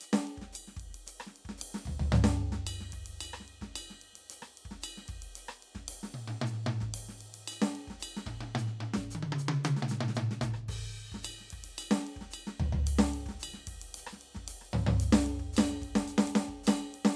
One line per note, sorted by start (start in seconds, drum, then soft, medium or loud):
0.01 hi-hat pedal medium
0.01 ride bell medium
0.13 snare loud
0.27 ride soft
0.37 kick soft
0.42 snare soft
0.53 hi-hat pedal medium
0.53 ride bell medium
0.68 snare soft
0.75 kick soft
0.75 cross-stick soft
0.80 kick soft
0.80 ride soft
0.90 snare soft
0.95 snare soft
0.95 ride medium
1.07 hi-hat pedal medium
1.07 ride medium
1.20 cross-stick medium
1.27 snare soft
1.36 ride soft
1.45 kick soft
1.49 snare soft
1.58 hi-hat pedal medium
1.58 ride loud
1.74 snare medium
1.85 kick soft
1.85 floor tom medium
1.91 kick soft
2.00 floor tom loud
2.12 hi-hat pedal medium
2.12 floor tom loud
2.24 snare loud
2.37 floor tom soft
2.52 kick soft
2.52 snare medium
2.67 hi-hat pedal medium
2.67 ride bell loud
2.81 snare soft
2.90 kick soft
2.90 cross-stick soft
2.90 ride medium
2.98 kick soft
3.05 snare soft
3.05 ride medium
3.08 snare soft
3.21 hi-hat pedal medium
3.21 ride bell loud
3.33 cross-stick medium
3.40 snare soft
3.48 ride soft
3.61 kick soft
3.61 snare soft
3.76 hi-hat pedal medium
3.76 ride bell loud
3.90 snare soft
4.02 ride soft
4.13 snare soft
4.13 ride medium
4.17 snare soft
4.30 hi-hat pedal medium
4.30 ride medium
4.42 cross-stick medium
4.57 ride medium
4.65 kick soft
4.71 snare soft
4.82 hi-hat pedal medium
4.82 ride bell loud
4.98 snare soft
5.06 kick soft
5.06 cross-stick soft
5.06 ride medium
5.16 kick soft
5.22 snare soft
5.22 ride medium
5.36 hi-hat pedal medium
5.36 ride medium
5.49 cross-stick medium
5.63 ride soft
5.75 kick soft
5.75 snare soft
5.88 hi-hat pedal medium
5.88 ride loud
6.03 snare soft
6.14 mid tom medium
6.28 mid tom medium
6.42 mid tom loud
6.46 hi-hat pedal medium
6.54 snare soft
6.67 mid tom loud
6.81 kick soft
6.81 snare soft
6.94 hi-hat pedal medium
6.94 ride loud
7.09 snare soft
7.21 ride medium
7.34 ride medium
7.48 hi-hat pedal medium
7.48 ride bell loud
7.62 snare medium
7.75 ride soft
7.87 kick soft
7.87 snare soft
8.00 hi-hat pedal medium
8.00 ride bell loud
8.17 snare medium
8.26 kick soft
8.26 snare soft
8.26 mid tom medium
8.32 kick soft
8.41 mid tom medium
8.55 hi-hat pedal medium
8.55 mid tom loud
8.67 snare soft
8.81 mid tom medium
8.94 kick soft
8.94 snare medium
9.11 hi-hat pedal loud
9.15 high tom medium
9.23 high tom loud
9.32 high tom loud
9.39 hi-hat pedal medium
9.49 high tom loud
9.64 hi-hat pedal medium
9.64 high tom loud
9.77 snare medium
9.83 mid tom loud
9.88 snare medium
9.88 hi-hat pedal medium
10.01 mid tom loud
10.08 snare soft
10.15 hi-hat pedal medium
10.15 mid tom loud
10.31 snare medium
10.41 kick soft
10.41 hi-hat pedal medium
10.41 mid tom loud
10.54 cross-stick medium
10.69 kick medium
10.69 hi-hat pedal medium
10.69 crash medium
10.82 kick soft
11.12 kick soft
11.12 snare soft
11.23 hi-hat pedal medium
11.23 ride bell loud
11.41 snare soft
11.45 cross-stick soft
11.51 kick soft
11.51 ride medium
11.62 snare soft
11.62 ride medium
11.66 snare soft
11.78 hi-hat pedal medium
11.78 ride bell loud
11.91 snare loud
11.98 snare soft
12.07 ride soft
12.16 kick soft
12.21 snare soft
12.31 hi-hat pedal medium
12.31 ride bell loud
12.47 snare medium
12.60 kick soft
12.60 floor tom loud
12.73 floor tom loud
12.86 hi-hat pedal medium
12.86 ride loud
12.99 snare loud
13.14 ride medium
13.26 kick soft
13.26 snare soft
13.31 kick soft
13.40 hi-hat pedal medium
13.40 ride bell loud
13.54 snare soft
13.60 snare soft
13.67 kick soft
13.67 ride medium
13.73 kick soft
13.73 snare soft
13.77 snare soft
13.82 ride medium
13.95 hi-hat pedal medium
13.95 ride loud
14.07 cross-stick medium
14.13 snare soft
14.21 ride medium
14.35 kick soft
14.35 snare soft
14.42 kick soft
14.48 hi-hat pedal medium
14.48 ride loud
14.61 cross-stick soft
14.73 floor tom loud
14.87 floor tom loud
15.00 hi-hat pedal medium
15.00 ride medium
15.13 snare loud
15.26 ride medium
15.40 kick soft
15.53 hi-hat pedal medium
15.53 ride bell loud
15.58 snare loud
15.82 kick soft
15.82 ride medium
15.88 kick soft
15.96 snare medium
16.08 hi-hat pedal medium
16.08 ride bell medium
16.18 snare loud
16.28 ride medium
16.35 snare loud
16.48 kick soft
16.64 hi-hat pedal medium
16.64 ride bell loud
16.68 snare loud
16.94 ride medium
17.05 snare loud